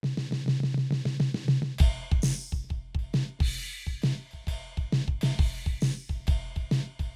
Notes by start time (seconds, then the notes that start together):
0.03 snare, floor tom
0.17 snare, floor tom
0.31 snare, floor tom
0.46 snare, floor tom
0.60 snare, floor tom
0.74 snare, floor tom
0.91 snare, floor tom
1.05 snare, floor tom
1.20 snare, floor tom
1.34 snare, floor tom
1.48 snare, floor tom
1.62 snare, floor tom
1.75 kick, ride
1.80 kick
2.11 kick
2.22 snare, crash
2.52 kick, snare
2.64 snare
2.69 kick, snare, ride bell
2.95 kick
2.99 ride
3.13 snare, ride
3.39 kick, snare, crash
3.49 snare
3.53 snare
3.57 snare
3.86 kick
4.02 snare, ride bell
4.31 kick, ride
4.44 kick, snare
4.48 ride
4.77 kick, ride, floor tom
4.93 snare, ride
5.08 kick
5.21 snare, ride
5.36 kick, crash
5.66 kick
5.81 snare, crash
6.09 kick, snare, ride bell
6.20 snare
6.25 kick, snare, ride
6.29 snare
6.31 snare
6.56 kick, ride
6.71 snare, ride
6.99 kick, snare, ride
7.10 snare